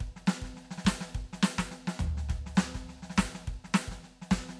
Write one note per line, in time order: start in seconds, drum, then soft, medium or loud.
0.01 kick soft
0.01 snare soft
0.08 kick soft
0.17 snare soft
0.27 snare loud
0.27 hi-hat pedal medium
0.42 kick soft
0.42 snare soft
0.57 snare soft
0.65 snare soft
0.71 snare medium
0.78 snare medium
0.85 kick soft
0.85 snare loud
0.85 hi-hat pedal medium
0.91 kick soft
1.01 snare medium
1.15 kick soft
1.15 snare soft
1.33 snare medium
1.43 snare loud
1.43 hi-hat pedal medium
1.59 kick soft
1.59 snare loud
1.72 snare soft
1.88 snare medium
2.00 kick soft
2.00 floor tom loud
2.00 hi-hat pedal medium
2.10 kick soft
2.18 snare soft
2.29 kick medium
2.29 snare soft
2.37 kick soft
2.41 kick soft
2.47 snare soft
2.56 snare loud
2.56 hi-hat pedal medium
2.75 kick soft
2.75 snare soft
2.89 snare soft
2.97 snare soft
3.03 snare soft
3.10 snare soft
3.17 kick soft
3.17 snare loud
3.17 hi-hat pedal medium
3.25 kick soft
3.28 kick soft
3.35 snare soft
3.48 kick soft
3.48 snare soft
3.54 kick soft
3.65 snare soft
3.74 snare loud
3.74 hi-hat pedal medium
3.88 kick soft
3.88 snare soft
4.04 snare soft
4.22 snare soft
4.31 kick soft
4.31 snare loud
4.31 hi-hat pedal medium
4.38 kick soft
4.41 kick soft
4.49 snare soft